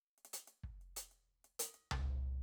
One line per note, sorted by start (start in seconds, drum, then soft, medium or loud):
0.18 closed hi-hat soft
0.25 closed hi-hat soft
0.33 closed hi-hat medium
0.48 closed hi-hat soft
0.63 kick soft
0.81 closed hi-hat soft
0.96 closed hi-hat medium
1.11 closed hi-hat soft
1.44 closed hi-hat soft
1.59 closed hi-hat loud
1.74 closed hi-hat soft
1.91 kick soft
1.91 floor tom loud